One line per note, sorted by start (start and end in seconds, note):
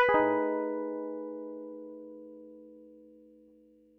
0.00 3.99 B4
0.09 3.51 G#4
0.15 3.99 D#4